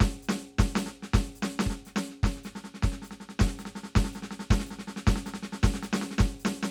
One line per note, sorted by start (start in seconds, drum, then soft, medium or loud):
0.01 kick loud
0.01 snare loud
0.18 snare soft
0.23 hi-hat pedal medium
0.29 snare loud
0.59 kick loud
0.59 snare loud
0.76 snare loud
0.76 hi-hat pedal medium
0.87 snare medium
1.03 snare medium
1.14 kick loud
1.14 snare loud
1.36 hi-hat pedal medium
1.43 snare loud
1.60 snare loud
1.67 kick medium
1.67 snare medium
1.86 snare soft
1.86 hi-hat pedal medium
1.97 snare loud
2.11 snare soft
2.24 kick loud
2.24 snare loud
2.36 snare soft
2.44 snare medium
2.44 hi-hat pedal medium
2.56 snare medium
2.65 snare medium
2.75 snare medium
2.83 kick loud
2.83 snare medium
2.93 snare medium
3.02 snare soft
3.02 hi-hat pedal medium
3.11 snare medium
3.21 snare soft
3.30 snare soft
3.40 kick loud
3.40 snare loud
3.48 snare medium
3.59 snare medium
3.59 hi-hat pedal medium
3.66 snare medium
3.84 snare medium
3.96 kick loud
3.96 snare loud
4.05 snare medium
4.13 snare medium
4.13 hi-hat pedal medium
4.23 snare medium
4.31 snare medium
4.40 snare medium
4.51 kick loud
4.51 snare loud
4.60 snare medium
4.67 hi-hat pedal medium
4.71 snare medium
4.79 snare medium
4.88 snare medium
4.97 snare medium
5.08 kick loud
5.08 snare loud
5.16 snare medium
5.26 hi-hat pedal medium
5.34 snare medium
5.43 snare medium
5.53 snare medium
5.64 kick loud
5.64 snare loud
5.75 snare medium
5.83 snare medium
5.83 hi-hat pedal medium
5.93 snare loud
6.02 snare medium
6.11 snare medium
6.19 kick loud
6.19 snare loud
6.40 hi-hat pedal medium
6.46 snare loud
6.63 snare loud